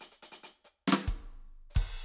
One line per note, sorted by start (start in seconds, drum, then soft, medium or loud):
0.01 closed hi-hat loud
0.12 closed hi-hat medium
0.23 closed hi-hat loud
0.32 closed hi-hat loud
0.44 closed hi-hat loud
0.65 hi-hat pedal medium
0.88 snare loud
0.92 snare loud
1.08 kick medium
1.70 hi-hat pedal soft
1.75 kick medium
1.75 crash medium
1.90 closed hi-hat soft